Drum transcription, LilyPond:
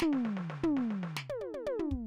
\new DrumStaff \drummode { \time 4/4 \tempo 4 = 116 <sn tomfh>16 sn16 sn16 sn16 sn16 tomfh16 sn16 sn16 sn16 sn16 <tommh hh>16 tommh16 tommh16 tommh16 tomfh16 bd16 | }